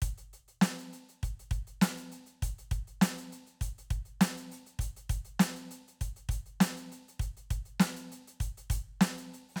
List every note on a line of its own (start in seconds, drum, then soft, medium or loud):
0.01 closed hi-hat loud
0.01 kick medium
0.18 closed hi-hat medium
0.33 closed hi-hat medium
0.48 closed hi-hat soft
0.61 closed hi-hat medium
0.61 snare loud
0.79 open hi-hat medium
0.93 closed hi-hat medium
1.09 closed hi-hat soft
1.23 closed hi-hat medium
1.23 kick medium
1.39 closed hi-hat medium
1.51 closed hi-hat medium
1.51 kick medium
1.67 closed hi-hat soft
1.81 closed hi-hat loud
1.81 snare loud
1.81 hi-hat pedal soft
1.97 open hi-hat medium
2.12 closed hi-hat medium
2.26 closed hi-hat soft
2.42 closed hi-hat loud
2.42 kick medium
2.58 closed hi-hat medium
2.71 closed hi-hat medium
2.71 kick medium
2.87 closed hi-hat soft
3.01 closed hi-hat loud
3.01 snare loud
3.18 closed hi-hat medium
3.32 closed hi-hat medium
3.47 closed hi-hat soft
3.61 closed hi-hat loud
3.61 kick medium
3.78 closed hi-hat medium
3.91 closed hi-hat medium
3.91 kick medium
4.05 closed hi-hat soft
4.21 closed hi-hat loud
4.21 snare loud
4.37 closed hi-hat medium
4.51 open hi-hat medium
4.66 closed hi-hat medium
4.79 closed hi-hat loud
4.79 kick medium
4.96 closed hi-hat medium
5.09 closed hi-hat loud
5.09 kick medium
5.25 closed hi-hat soft
5.40 closed hi-hat loud
5.40 snare loud
5.56 closed hi-hat medium
5.71 closed hi-hat medium
5.88 closed hi-hat soft
6.01 closed hi-hat medium
6.01 kick medium
6.16 closed hi-hat medium
6.29 closed hi-hat loud
6.29 kick medium
6.46 closed hi-hat soft
6.60 closed hi-hat loud
6.60 snare loud
6.77 closed hi-hat medium
6.92 closed hi-hat medium
7.08 closed hi-hat medium
7.20 closed hi-hat medium
7.20 kick medium
7.37 closed hi-hat soft
7.50 closed hi-hat medium
7.50 kick medium
7.65 closed hi-hat soft
7.80 closed hi-hat loud
7.80 snare loud
7.96 open hi-hat medium
8.12 closed hi-hat medium
8.28 closed hi-hat medium
8.40 closed hi-hat loud
8.40 kick medium
8.57 closed hi-hat medium
8.70 open hi-hat loud
8.70 kick medium
9.01 open hi-hat loud
9.01 snare loud
9.01 hi-hat pedal medium
9.18 closed hi-hat medium
9.34 closed hi-hat medium
9.49 open hi-hat soft
9.56 snare medium